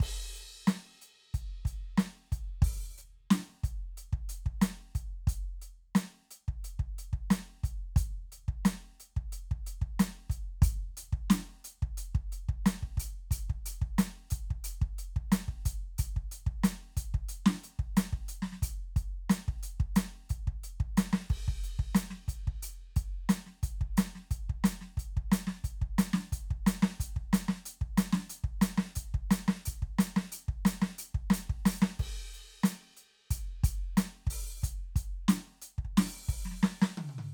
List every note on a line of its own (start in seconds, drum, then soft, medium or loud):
0.00 kick medium
0.00 crash loud
0.35 closed hi-hat medium
0.67 closed hi-hat medium
0.67 snare loud
1.02 closed hi-hat medium
1.34 closed hi-hat medium
1.34 kick medium
1.65 closed hi-hat medium
1.65 kick medium
1.98 closed hi-hat medium
1.98 snare loud
2.32 closed hi-hat medium
2.32 kick medium
2.62 open hi-hat loud
2.62 kick loud
2.98 open hi-hat medium
2.98 hi-hat pedal medium
3.31 closed hi-hat medium
3.31 snare loud
3.64 closed hi-hat medium
3.64 kick medium
3.97 closed hi-hat medium
4.13 kick medium
4.29 closed hi-hat loud
4.46 kick medium
4.62 closed hi-hat loud
4.62 snare loud
4.95 closed hi-hat medium
4.95 kick medium
5.27 closed hi-hat loud
5.27 kick medium
5.62 closed hi-hat medium
5.95 closed hi-hat loud
5.95 snare loud
6.31 closed hi-hat medium
6.48 kick medium
6.64 closed hi-hat medium
6.79 kick medium
6.98 closed hi-hat medium
7.13 kick medium
7.31 closed hi-hat loud
7.31 snare loud
7.64 closed hi-hat medium
7.64 kick medium
7.96 closed hi-hat loud
7.96 kick loud
8.32 closed hi-hat medium
8.48 kick medium
8.65 closed hi-hat loud
8.65 snare loud
9.00 closed hi-hat medium
9.17 kick medium
9.32 closed hi-hat medium
9.51 kick medium
9.67 closed hi-hat medium
9.82 kick medium
10.00 closed hi-hat loud
10.00 snare loud
10.30 closed hi-hat medium
10.30 kick medium
10.62 closed hi-hat loud
10.62 kick loud
10.97 closed hi-hat loud
11.13 kick medium
11.30 closed hi-hat loud
11.30 snare loud
11.64 closed hi-hat loud
11.82 kick medium
11.98 closed hi-hat loud
12.15 kick medium
12.32 closed hi-hat medium
12.49 kick medium
12.66 closed hi-hat loud
12.66 snare loud
12.83 kick medium
12.97 closed hi-hat loud
12.97 kick medium
13.31 closed hi-hat loud
13.31 kick medium
13.50 kick medium
13.66 closed hi-hat loud
13.82 kick medium
13.98 closed hi-hat loud
13.98 snare loud
14.30 closed hi-hat loud
14.30 kick medium
14.51 kick medium
14.64 closed hi-hat loud
14.82 kick medium
14.98 closed hi-hat medium
15.16 kick medium
15.32 closed hi-hat loud
15.32 snare loud
15.48 kick medium
15.66 closed hi-hat loud
15.66 kick medium
15.98 closed hi-hat loud
15.98 kick medium
16.16 kick medium
16.32 closed hi-hat loud
16.47 kick medium
16.64 closed hi-hat loud
16.64 snare loud
16.97 closed hi-hat loud
16.97 kick medium
17.14 kick medium
17.29 closed hi-hat loud
17.46 snare loud
17.64 closed hi-hat medium
17.79 kick medium
17.97 closed hi-hat loud
17.97 snare loud
18.13 kick medium
18.28 closed hi-hat loud
18.42 snare medium
18.53 snare medium
18.62 closed hi-hat loud
18.62 kick medium
18.96 closed hi-hat medium
18.96 kick medium
19.30 closed hi-hat loud
19.30 snare loud
19.48 kick medium
19.63 closed hi-hat loud
19.80 kick medium
19.96 closed hi-hat loud
19.96 snare loud
20.30 closed hi-hat medium
20.30 kick medium
20.47 kick medium
20.64 closed hi-hat medium
20.80 kick medium
20.97 closed hi-hat loud
20.97 snare loud
21.13 snare loud
21.30 kick medium
21.30 crash medium
21.48 kick medium
21.64 closed hi-hat medium
21.79 kick medium
21.95 closed hi-hat loud
21.95 snare loud
22.10 snare medium
22.28 closed hi-hat medium
22.28 kick medium
22.47 kick medium
22.63 closed hi-hat loud
22.96 closed hi-hat medium
22.96 kick medium
23.29 closed hi-hat loud
23.29 snare loud
23.46 snare soft
23.63 closed hi-hat medium
23.63 kick medium
23.81 kick medium
23.97 closed hi-hat loud
23.97 snare loud
24.15 snare medium
24.23 snare soft
24.31 closed hi-hat medium
24.31 kick medium
24.50 kick medium
24.64 closed hi-hat loud
24.64 snare loud
24.81 snare medium
24.97 closed hi-hat medium
24.97 kick medium
25.17 kick medium
25.32 closed hi-hat loud
25.32 snare loud
25.47 snare medium
25.64 closed hi-hat medium
25.64 kick medium
25.82 kick medium
25.98 closed hi-hat loud
25.98 snare loud
26.13 snare loud
26.32 closed hi-hat loud
26.32 kick medium
26.51 kick medium
26.67 closed hi-hat loud
26.67 snare loud
26.83 snare loud
27.00 closed hi-hat loud
27.00 kick medium
27.16 kick medium
27.33 closed hi-hat loud
27.33 snare loud
27.48 snare loud
27.66 closed hi-hat loud
27.81 kick medium
27.98 closed hi-hat loud
27.98 snare loud
28.13 snare loud
28.20 snare soft
28.30 closed hi-hat loud
28.44 kick medium
28.62 closed hi-hat loud
28.62 snare loud
28.78 snare loud
28.96 closed hi-hat loud
28.96 kick medium
29.14 kick medium
29.31 closed hi-hat loud
29.31 snare loud
29.48 snare loud
29.66 closed hi-hat loud
29.66 kick medium
29.82 kick medium
29.99 closed hi-hat loud
29.99 snare loud
30.16 snare loud
30.32 closed hi-hat loud
30.48 kick medium
30.65 closed hi-hat loud
30.65 snare loud
30.82 snare loud
30.98 closed hi-hat loud
31.15 kick medium
31.30 closed hi-hat loud
31.30 snare loud
31.50 kick medium
31.66 open hi-hat loud
31.66 snare loud
31.82 snare loud
31.99 kick medium
31.99 hi-hat pedal soft
31.99 crash medium
32.34 closed hi-hat medium
32.64 closed hi-hat loud
32.64 snare loud
32.97 closed hi-hat medium
33.31 closed hi-hat loud
33.31 kick medium
33.64 closed hi-hat loud
33.64 kick loud
33.97 closed hi-hat loud
33.97 snare loud
34.27 open hi-hat loud
34.27 kick medium
34.62 closed hi-hat loud
34.62 kick medium
34.62 hi-hat pedal medium
34.96 closed hi-hat medium
34.96 kick medium
35.28 closed hi-hat loud
35.28 snare loud
35.62 closed hi-hat loud
35.78 kick medium
35.85 kick soft
35.97 open hi-hat loud
35.97 snare loud
36.29 open hi-hat loud
36.29 kick medium
36.45 snare medium
36.51 snare soft
36.63 snare loud
36.82 snare loud
36.98 high tom loud
37.09 high tom medium
37.18 high tom medium